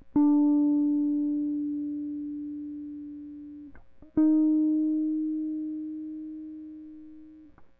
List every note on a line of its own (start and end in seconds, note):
0.16 3.72 D4
4.18 7.50 D#4